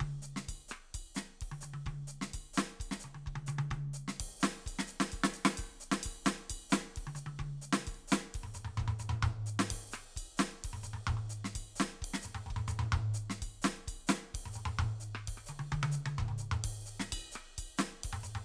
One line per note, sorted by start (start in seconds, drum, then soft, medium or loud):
0.01 kick soft
0.01 high tom loud
0.23 hi-hat pedal medium
0.37 snare medium
0.49 kick soft
0.49 ride bell medium
0.69 cross-stick medium
0.69 hi-hat pedal medium
0.95 kick soft
0.95 ride bell medium
1.15 snare medium
1.15 hi-hat pedal medium
1.42 kick soft
1.42 ride medium
1.52 high tom medium
1.62 hi-hat pedal medium
1.62 high tom medium
1.74 high tom medium
1.87 kick soft
1.87 high tom medium
2.08 hi-hat pedal medium
2.22 snare medium
2.34 kick soft
2.34 ride bell medium
2.54 hi-hat pedal medium
2.58 snare loud
2.81 kick soft
2.81 ride bell medium
2.92 snare medium
3.00 hi-hat pedal medium
3.05 high tom soft
3.15 high tom medium
3.27 kick soft
3.27 high tom soft
3.36 high tom medium
3.47 hi-hat pedal medium
3.47 high tom medium
3.59 high tom loud
3.71 kick soft
3.71 high tom loud
3.94 hi-hat pedal medium
4.09 snare medium
4.21 kick soft
4.21 ride loud
4.41 snare loud
4.41 hi-hat pedal medium
4.67 kick soft
4.67 ride bell medium
4.75 kick soft
4.79 snare medium
4.88 hi-hat pedal medium
4.88 ride soft
5.01 snare medium
5.13 kick soft
5.13 ride bell medium
5.24 snare loud
5.34 hi-hat pedal medium
5.34 ride medium
5.46 snare loud
5.58 kick soft
5.58 ride bell medium
5.81 hi-hat pedal medium
5.92 snare medium
6.04 kick soft
6.04 ride bell loud
6.26 snare loud
6.26 hi-hat pedal medium
6.50 kick soft
6.50 ride bell medium
6.70 snare loud
6.70 hi-hat pedal medium
6.97 kick soft
6.97 ride medium
7.07 high tom medium
7.16 hi-hat pedal medium
7.16 high tom medium
7.27 high tom medium
7.40 kick soft
7.40 high tom loud
7.62 hi-hat pedal medium
7.73 snare loud
7.87 kick soft
7.87 ride bell medium
7.95 ride soft
8.08 hi-hat pedal medium
8.13 snare loud
8.35 kick soft
8.35 ride medium
8.44 mid tom medium
8.55 hi-hat pedal medium
8.55 mid tom medium
8.65 mid tom medium
8.78 kick soft
8.78 mid tom loud
8.88 mid tom loud
9.00 hi-hat pedal medium
9.00 mid tom medium
9.10 mid tom loud
9.23 kick soft
9.23 mid tom loud
9.47 hi-hat pedal medium
9.60 snare loud
9.71 kick soft
9.71 ride loud
9.92 cross-stick medium
9.92 hi-hat pedal medium
10.17 kick soft
10.17 ride bell medium
10.38 snare loud
10.38 hi-hat pedal medium
10.65 kick soft
10.65 ride medium
10.74 mid tom medium
10.84 hi-hat pedal medium
10.84 mid tom medium
10.94 mid tom medium
11.08 kick soft
11.08 mid tom loud
11.14 kick soft
11.30 hi-hat pedal medium
11.45 snare medium
11.56 kick soft
11.56 ride bell medium
11.76 hi-hat pedal medium
11.81 snare medium
12.02 kick soft
12.02 ride loud
12.14 snare medium
12.22 hi-hat pedal medium
12.22 mid tom medium
12.35 mid tom medium
12.47 mid tom medium
12.51 kick soft
12.68 hi-hat pedal medium
12.68 mid tom loud
12.80 mid tom loud
12.93 kick soft
12.93 mid tom loud
13.15 hi-hat pedal medium
13.30 snare medium
13.42 kick soft
13.42 ride bell medium
13.50 kick soft
13.62 snare loud
13.62 hi-hat pedal medium
13.88 kick soft
13.88 ride bell medium
13.95 kick soft
14.08 snare loud
14.08 hi-hat pedal medium
14.35 kick soft
14.35 ride loud
14.46 mid tom medium
14.54 hi-hat pedal medium
14.66 mid tom medium
14.79 kick soft
14.79 mid tom loud
15.01 hi-hat pedal medium
15.16 cross-stick medium
15.28 kick soft
15.28 ride medium
15.38 cross-stick soft
15.47 hi-hat pedal medium
15.47 high tom medium
15.60 high tom medium
15.73 kick soft
15.73 high tom loud
15.84 high tom loud
15.92 hi-hat pedal medium
15.92 high tom soft
16.06 high tom loud
16.19 kick soft
16.19 mid tom loud
16.26 kick soft
16.26 mid tom medium
16.39 hi-hat pedal medium
16.39 mid tom soft
16.52 mid tom loud
16.65 kick soft
16.65 ride loud
16.86 hi-hat pedal medium
17.00 snare medium
17.13 kick soft
17.13 ride bell loud
17.32 cross-stick medium
17.32 hi-hat pedal medium
17.59 kick soft
17.59 ride bell medium
17.78 snare medium
17.78 hi-hat pedal medium
18.04 kick soft
18.04 ride loud
18.13 mid tom medium
18.24 hi-hat pedal medium
18.24 mid tom medium
18.36 mid tom medium